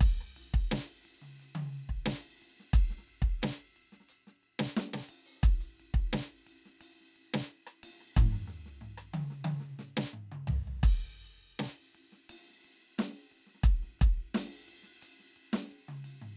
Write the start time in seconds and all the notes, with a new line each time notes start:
0.01 kick, crash
0.21 cross-stick
0.37 ride
0.54 kick
0.72 snare, ride
1.05 ride
1.17 hi-hat pedal
1.22 high tom
1.40 hi-hat pedal, ride
1.55 high tom
1.73 ride bell
1.89 kick
2.06 snare, ride
2.42 ride
2.60 snare
2.74 kick, ride bell
2.85 ride
2.90 snare
2.98 snare
3.08 ride bell
3.22 kick
3.42 snare, ride bell
3.76 ride bell
3.92 snare
4.00 snare
4.09 hi-hat pedal, ride bell
4.27 snare
4.43 ride bell
4.60 snare
4.67 hi-hat pedal
4.77 snare
4.94 snare
5.09 ride
5.26 percussion
5.43 kick, hi-hat pedal, ride
5.61 closed hi-hat
5.80 ride
5.94 kick
6.13 snare, ride
6.47 ride
6.66 snare
6.79 hi-hat pedal, ride
7.01 snare
7.16 ride
7.34 snare
7.51 ride
7.67 cross-stick
7.84 ride
8.01 cross-stick
8.17 kick, mid tom
8.33 snare
8.48 snare
8.66 snare
8.81 mid tom
8.98 cross-stick
9.14 high tom
9.30 snare
9.45 high tom
9.60 snare
9.79 snare
9.97 snare
10.13 mid tom
10.32 high tom
10.48 floor tom
10.68 floor tom
10.84 kick, crash
11.04 floor tom
11.25 ride bell
11.60 snare, ride
11.95 ride
12.12 snare
12.30 ride
12.50 snare
12.56 snare
12.65 ride
12.99 snare, ride
13.32 ride
13.40 ride
13.47 snare
13.55 snare
13.62 kick, snare, ride
13.83 snare
13.89 snare
14.00 kick, ride
14.35 snare, ride
14.40 hi-hat pedal
14.69 ride
14.84 snare
15.02 hi-hat pedal, ride
15.20 snare
15.36 ride
15.53 snare
15.63 hi-hat pedal
15.72 ride
15.89 high tom
16.05 ride
16.22 mid tom